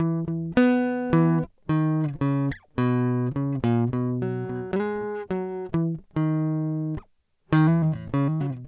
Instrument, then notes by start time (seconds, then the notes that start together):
acoustic guitar
0.01 E3
0.30 E3
0.58 B3
1.14 E3
1.70 D#3
2.22 C#3
2.79 B2
3.37 C#3
3.65 A#2
3.94 B2
4.23 F#3
4.51 B2
4.74 G#3
5.32 F#3
5.75 E3
6.17 D#3
7.54 D#3
7.69 E3
7.84 D#3
7.94 A2
8.15 C#3
8.29 D#3
8.42 C#3
8.52 B2